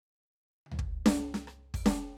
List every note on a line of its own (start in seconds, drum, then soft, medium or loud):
0.66 high tom soft
0.72 floor tom medium
0.79 kick medium
1.06 snare loud
1.34 snare medium
1.47 cross-stick medium
1.74 open hi-hat medium
1.74 kick medium
1.86 snare loud
1.86 hi-hat pedal soft
2.00 snare soft